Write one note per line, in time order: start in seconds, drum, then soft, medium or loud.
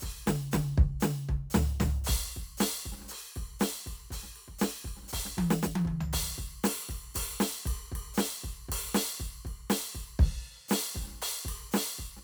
0.01 kick medium
0.01 hi-hat pedal medium
0.01 crash medium
0.27 kick soft
0.27 snare loud
0.27 mid tom loud
0.52 kick medium
0.52 snare loud
0.52 hi-hat pedal medium
0.52 mid tom loud
0.78 kick loud
0.78 mid tom soft
1.01 kick soft
1.01 snare loud
1.01 hi-hat pedal medium
1.01 mid tom loud
1.29 kick medium
1.29 mid tom medium
1.51 hi-hat pedal medium
1.55 kick soft
1.55 snare loud
1.55 floor tom loud
1.81 kick medium
1.81 snare loud
1.81 floor tom loud
2.05 hi-hat pedal medium
2.05 crash loud
2.09 kick medium
2.37 kick medium
2.58 kick soft
2.58 snare loud
2.58 hi-hat pedal medium
2.58 crash loud
2.86 kick medium
2.93 kick soft
2.93 snare soft
2.98 snare soft
3.01 snare soft
3.04 snare soft
3.06 snare soft
3.06 hi-hat pedal medium
3.09 snare soft
3.11 snare soft
3.11 crash medium
3.36 kick medium
3.36 crash medium
3.60 snare loud
3.60 hi-hat pedal medium
3.60 crash loud
3.87 kick medium
3.87 crash soft
4.11 kick medium
4.11 hi-hat pedal medium
4.11 crash medium
4.24 snare soft
4.35 kick soft
4.35 crash soft
4.48 kick soft
4.59 snare loud
4.59 hi-hat pedal loud
4.59 crash medium
4.85 kick medium
4.85 crash soft
4.97 snare soft
5.03 snare soft
5.06 snare soft
5.06 hi-hat pedal medium
5.13 kick medium
5.13 crash loud
5.26 snare soft
5.38 kick medium
5.38 high tom loud
5.51 snare loud
5.63 kick soft
5.63 snare loud
5.63 hi-hat pedal medium
5.76 high tom loud
5.85 kick medium
5.85 mid tom medium
6.01 floor tom medium
6.13 kick medium
6.13 hi-hat pedal medium
6.13 crash loud
6.37 kick medium
6.37 crash soft
6.64 snare loud
6.64 hi-hat pedal medium
6.64 crash loud
6.89 kick medium
6.89 crash soft
7.10 snare soft
7.15 kick medium
7.15 hi-hat pedal loud
7.15 crash loud
7.41 snare loud
7.41 crash loud
7.66 kick medium
7.66 crash medium
7.92 kick medium
7.92 crash medium
8.14 snare loud
8.14 hi-hat pedal medium
8.19 crash loud
8.44 kick medium
8.44 crash soft
8.69 kick medium
8.69 crash loud
8.95 snare loud
8.95 crash loud
9.20 kick medium
9.20 crash soft
9.45 kick medium
9.45 crash soft
9.70 snare loud
9.70 crash loud
9.95 kick medium
9.95 crash soft
10.20 kick loud
10.20 crash medium
10.69 snare loud
10.69 hi-hat pedal loud
10.69 crash loud
10.95 kick medium
10.95 snare soft
11.00 snare soft
11.04 snare soft
11.07 snare soft
11.11 snare soft
11.17 snare soft
11.21 snare soft
11.21 crash loud
11.45 kick medium
11.45 crash medium
11.72 snare loud
11.72 hi-hat pedal medium
11.77 crash loud
11.99 kick medium
11.99 crash soft
12.17 snare soft